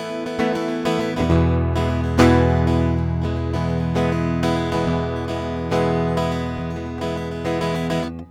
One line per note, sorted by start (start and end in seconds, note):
0.00 0.28 A#3
0.00 0.11 B3
0.00 0.25 E4
0.11 0.28 B3
0.25 0.41 B3
0.25 0.41 E4
0.25 0.40 A#4
0.40 0.88 E3
0.40 0.50 A3
0.40 0.55 B3
0.40 0.54 E4
0.50 0.87 A3
0.50 0.70 E4
0.55 0.69 B3
0.69 0.87 B3
0.69 0.85 E4
0.87 0.99 A2
0.87 1.00 E3
0.87 1.00 A#3
0.87 1.01 B3
0.87 1.02 E4
1.00 1.21 A2
1.00 1.16 E3
1.00 1.15 A3
1.00 1.19 B3
1.00 1.18 E4
1.19 1.31 E2
1.19 1.32 B2
1.19 1.28 D#3
1.19 1.39 G3
1.19 1.76 B3
1.19 1.74 E4
1.31 1.80 E2
1.31 1.79 B2
1.31 1.79 E3
1.77 2.19 E2
1.77 1.89 B2
1.77 1.90 E3
1.77 1.91 G#3
1.77 1.91 B3
1.77 2.02 E4
1.90 2.19 B2
1.90 2.06 E3
1.90 2.05 G#3
1.90 2.02 B3
2.02 2.21 G#3
2.02 2.19 B3
2.02 2.22 E4
2.07 2.20 E3
2.19 3.29 E2
2.19 3.00 B2
2.19 2.71 E3
2.19 2.90 G#3
2.19 2.68 B3
2.19 2.67 E4
2.69 2.99 E3
2.69 2.98 B3
2.69 2.97 E4
2.91 2.99 G#3
2.99 3.38 B2
2.99 3.26 E3
3.23 3.38 E3
3.23 3.39 G#3
3.23 3.53 B3
3.23 3.52 E4
3.29 3.58 E2
3.38 3.58 B2
3.38 3.57 E3
3.55 4.76 E2
3.55 3.96 B2
3.55 3.94 E3
3.55 3.70 G#3
3.55 3.80 B3
3.55 3.79 E4
3.71 3.80 G#3
3.80 3.97 G#3
3.80 3.98 B3
3.80 3.98 E4
3.96 4.75 B2
3.96 4.43 E3
3.96 4.44 G#3
3.96 4.07 B3
3.96 4.11 E4
4.08 4.15 B3
4.08 4.43 E4
4.45 4.75 E3
4.45 4.74 A3
4.45 4.57 E4
4.57 4.74 B3
4.57 4.72 E4
4.74 4.87 E2
4.74 4.88 B2
4.74 5.31 E3
4.74 5.31 G#3
4.74 5.28 B3
4.74 5.17 E4
4.88 6.59 E2
4.88 5.32 B2
5.18 5.27 E4
5.30 5.41 B2
5.30 5.42 E3
5.30 5.44 G#3
5.30 5.74 B3
5.30 5.58 E4
5.42 5.72 B2
5.42 5.72 E3
5.42 5.72 G#3
5.58 5.74 E4
5.72 7.91 B2
5.72 6.78 E3
5.72 6.19 G#3
5.72 6.20 B3
5.72 6.18 E4
6.19 6.72 B3
6.19 6.33 E4
6.33 6.44 E4
6.46 6.60 E4
6.60 8.29 E2
6.72 7.01 B3
6.78 6.88 E3
6.88 7.05 E3
7.03 7.46 E3
7.03 7.17 G#3
7.03 7.17 B3
7.03 7.18 E4
7.17 7.33 G#3
7.17 7.30 B3
7.17 7.30 E4
7.30 7.46 G#3
7.30 7.47 B3
7.30 7.47 E4
7.46 7.64 E3
7.46 7.64 G#3
7.46 7.63 B3
7.46 7.62 E4
7.63 7.75 E3
7.63 7.74 B3
7.63 7.77 E4
7.76 7.93 E3
7.76 7.90 E4
7.92 8.02 E3
7.92 8.14 B3
7.92 8.04 E4
8.05 8.15 E4